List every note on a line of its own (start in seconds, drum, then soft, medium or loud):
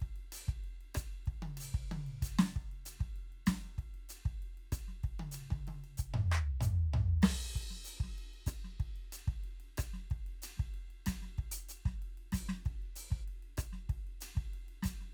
0.01 kick soft
0.01 ride soft
0.16 ride soft
0.33 hi-hat pedal medium
0.33 ride bell medium
0.47 kick soft
0.47 snare soft
0.64 ride soft
0.81 ride soft
0.95 kick soft
0.95 cross-stick medium
0.95 hi-hat pedal medium
0.95 ride bell medium
1.26 kick soft
1.26 ride soft
1.43 high tom loud
1.43 ride soft
1.58 hi-hat pedal medium
1.58 ride bell medium
1.74 kick soft
1.92 high tom loud
1.92 ride soft
2.07 ride soft
2.22 kick soft
2.22 hi-hat pedal medium
2.22 ride bell medium
2.39 snare loud
2.56 kick medium
2.72 ride soft
2.86 hi-hat pedal medium
2.86 ride bell medium
3.00 kick soft
3.00 snare soft
3.16 ride soft
3.33 ride soft
3.47 kick soft
3.47 snare medium
3.47 hi-hat pedal medium
3.47 ride bell medium
3.65 snare soft
3.79 kick soft
3.79 ride soft
3.83 snare soft
3.95 ride soft
4.09 hi-hat pedal medium
4.09 ride bell medium
4.25 kick soft
4.25 snare soft
4.43 ride soft
4.58 ride soft
4.73 kick soft
4.73 cross-stick medium
4.73 hi-hat pedal medium
4.73 ride bell medium
4.88 snare soft
5.04 kick soft
5.04 ride soft
5.20 high tom loud
5.20 ride soft
5.32 hi-hat pedal medium
5.32 ride bell medium
5.51 kick soft
5.51 high tom medium
5.68 high tom medium
5.68 ride soft
5.84 ride bell soft
5.98 kick soft
5.98 hi-hat pedal medium
5.98 ride soft
6.14 mid tom loud
6.32 percussion loud
6.61 hi-hat pedal medium
6.61 mid tom loud
6.94 mid tom loud
7.23 snare loud
7.23 crash loud
7.56 kick soft
7.56 ride medium
7.71 snare soft
7.85 hi-hat pedal medium
7.85 ride medium
8.00 kick soft
8.00 snare soft
8.19 ride soft
8.34 ride soft
8.47 kick soft
8.47 cross-stick medium
8.47 hi-hat pedal medium
8.47 ride bell medium
8.65 snare soft
8.80 kick soft
8.80 ride soft
8.96 ride soft
9.13 hi-hat pedal loud
9.13 ride bell medium
9.28 kick medium
9.28 snare soft
9.44 ride soft
9.61 ride soft
9.78 kick soft
9.78 cross-stick medium
9.78 hi-hat pedal medium
9.78 ride bell medium
9.94 snare soft
10.11 kick soft
10.11 ride soft
10.27 ride soft
10.43 hi-hat pedal loud
10.43 ride bell medium
10.58 kick soft
10.58 snare soft
10.74 ride soft
10.91 ride soft
11.07 kick soft
11.07 snare medium
11.07 hi-hat pedal medium
11.07 ride bell medium
11.23 snare soft
11.38 kick soft
11.38 ride soft
11.52 closed hi-hat loud
11.52 ride soft
11.69 hi-hat pedal medium
11.69 ride bell medium
11.86 kick medium
11.86 snare soft
12.03 ride soft
12.18 ride soft
12.33 kick soft
12.33 snare medium
12.33 hi-hat pedal medium
12.33 ride medium
12.49 snare medium
12.66 kick soft
12.66 ride bell soft
12.82 ride soft
12.96 hi-hat pedal medium
12.96 ride bell medium
13.11 kick soft
13.11 snare soft
13.28 ride soft
13.43 ride soft
13.58 kick soft
13.58 cross-stick medium
13.58 hi-hat pedal medium
13.58 ride bell medium
13.73 snare soft
13.90 kick soft
13.90 ride soft
14.07 ride soft
14.21 hi-hat pedal medium
14.21 ride bell medium
14.35 kick soft
14.35 snare soft
14.54 ride soft
14.69 ride soft
14.83 kick soft
14.83 snare medium
14.83 hi-hat pedal medium
14.83 ride bell medium
15.01 snare soft